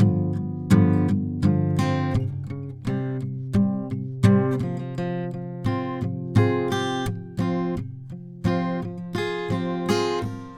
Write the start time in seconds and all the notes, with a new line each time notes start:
0.00 G2 D3 F3 B3
0.34 G2
0.71 G2 D3 F3 B3
1.10 G2 D3 F3
1.44 G2 D3 F3 B3
1.80 F3 C4
2.16 C#3 F#3
2.51 C#3
2.86 C3 G3
3.22 C3
3.55 C3 G3 C4
3.92 C3
4.25 C3 G3 C4
4.54 A#3
4.62 C3 F3
4.79 F3
4.99 F3
5.33 F3
5.66 C4 F4
6.03 C3 F3
6.37 C4 F4 G#4
6.73 C4 F4 G4
7.07 F3 F4
7.39 F3 C4
7.43 F4
7.78 C3
8.11 F3
8.46 F3 C4 F4
8.82 F3 F4
8.99 F3
9.16 F4 G#4
9.51 F3 C4 F4 G4
9.90 C4 F4 G#4
10.20 F4 A#4